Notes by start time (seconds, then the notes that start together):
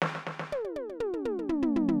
0.03 snare
0.16 snare
0.27 snare
0.40 snare
0.53 high tom
0.65 high tom
0.76 high tom
0.90 high tom
1.00 mid tom
1.14 mid tom
1.26 mid tom
1.39 mid tom
1.49 floor tom
1.62 floor tom
1.76 floor tom
1.89 floor tom